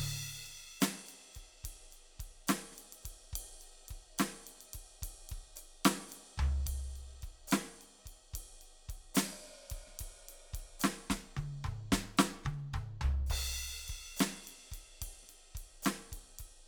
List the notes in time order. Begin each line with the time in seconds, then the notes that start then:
0.01 kick
0.46 snare, ride
0.81 snare, hi-hat pedal, ride
1.06 hi-hat pedal, ride
1.33 kick, snare, hi-hat pedal, ride
1.64 kick, ride
1.91 hi-hat pedal, ride
2.16 kick, snare
2.21 ride
2.48 snare, hi-hat pedal, ride
2.72 snare, hi-hat pedal
2.78 snare, ride
2.82 snare
2.93 ride
3.02 kick, hi-hat pedal, ride
3.33 kick, ride
3.60 hi-hat pedal, ride
3.89 kick, ride
4.18 snare, hi-hat pedal, ride
4.46 snare, hi-hat pedal, ride
4.52 snare
4.57 snare
4.60 snare, ride
4.64 snare
4.74 kick, ride
5.03 kick, ride
5.30 kick, snare, ride
5.37 kick
5.56 hi-hat pedal, ride
5.85 snare, ride
6.09 snare, hi-hat pedal, ride
6.17 snare
6.26 snare
6.30 snare
6.37 kick, snare, floor tom
6.66 kick, ride
6.72 kick
6.96 ride
7.23 kick, ride
7.48 hi-hat pedal
7.52 snare, ride
7.64 snare
7.81 ride
7.99 snare
8.06 kick, ride
8.34 kick, ride
8.61 ride
8.89 kick, ride
9.15 snare, hi-hat pedal, ride
9.70 kick, ride
9.87 snare
9.93 snare
9.99 kick, ride
10.29 ride
10.54 kick, ride
10.60 kick
10.80 hi-hat pedal, ride
10.84 snare
11.10 kick, snare
11.37 kick, high tom
11.44 kick
11.65 kick, mid tom
11.72 kick
11.92 kick, snare
11.99 kick
12.18 snare, hi-hat pedal
12.43 kick, snare, high tom
12.51 kick, snare
12.58 snare
12.74 kick, mid tom
12.80 kick
13.01 kick, floor tom
13.09 kick
13.27 kick, hi-hat pedal, crash
13.37 kick
13.85 snare, ride
13.90 kick
14.17 snare, hi-hat pedal, ride
14.44 snare, hi-hat pedal, ride
14.53 snare
14.66 snare
14.70 kick, hi-hat pedal, ride
15.02 kick, ride
15.07 kick
15.23 snare
15.28 snare, ride
15.55 kick, ride
15.83 snare, hi-hat pedal, ride
16.12 kick, ride
16.39 kick, ride